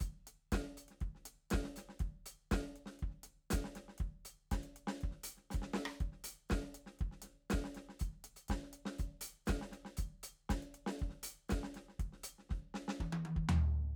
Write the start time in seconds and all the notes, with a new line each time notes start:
0.01 closed hi-hat, kick
0.28 closed hi-hat
0.53 kick, snare, closed hi-hat
0.78 closed hi-hat
0.89 snare, closed hi-hat
1.01 kick, closed hi-hat
1.16 snare
1.26 closed hi-hat
1.51 kick, snare, closed hi-hat
1.65 snare
1.77 closed hi-hat, snare
1.90 snare
2.00 kick, closed hi-hat
2.27 closed hi-hat
2.52 kick, snare, closed hi-hat
2.76 closed hi-hat
2.87 snare
3.00 kick, closed hi-hat
3.11 snare
3.24 snare, closed hi-hat
3.51 closed hi-hat, kick, snare
3.65 snare
3.76 snare, closed hi-hat
3.89 snare
3.99 kick, closed hi-hat
4.26 closed hi-hat
4.52 kick, snare, closed hi-hat
4.64 closed hi-hat
4.77 closed hi-hat
4.88 snare
5.02 kick, closed hi-hat
5.12 snare
5.24 open hi-hat
5.38 snare
5.51 kick, snare, hi-hat pedal
5.63 snare
5.74 snare
5.86 cross-stick
6.01 kick, closed hi-hat
6.13 snare
6.25 open hi-hat
6.50 kick, snare, closed hi-hat, hi-hat pedal
6.64 snare
6.75 closed hi-hat
6.87 snare
7.00 kick, closed hi-hat
7.12 snare
7.23 snare, closed hi-hat
7.51 kick, snare, closed hi-hat
7.65 snare
7.75 snare, closed hi-hat
7.90 snare
8.00 closed hi-hat, kick
8.12 snare
8.25 closed hi-hat
8.37 closed hi-hat
8.49 kick, snare, closed hi-hat
8.64 snare
8.74 closed hi-hat
8.86 snare
8.99 closed hi-hat, kick
9.22 open hi-hat
9.46 kick, snare, closed hi-hat, hi-hat pedal
9.62 snare
9.72 snare, closed hi-hat
9.86 snare
9.98 closed hi-hat, kick
10.24 closed hi-hat
10.50 kick, snare, closed hi-hat
10.63 closed hi-hat
10.75 closed hi-hat
10.87 snare
11.00 kick, closed hi-hat
11.10 snare
11.24 open hi-hat
11.49 kick, snare, closed hi-hat, hi-hat pedal
11.64 snare
11.75 snare, closed hi-hat
11.89 snare
12.00 kick, closed hi-hat
12.13 snare
12.24 closed hi-hat
12.39 snare
12.50 kick, snare
12.75 snare
12.89 snare
13.01 kick, high tom
13.13 high tom
13.26 high tom
13.37 kick
13.49 floor tom